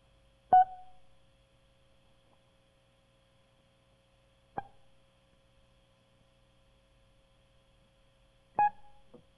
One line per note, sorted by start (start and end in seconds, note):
0.53 0.64 F#5
4.58 4.64 G5
8.59 8.69 G#5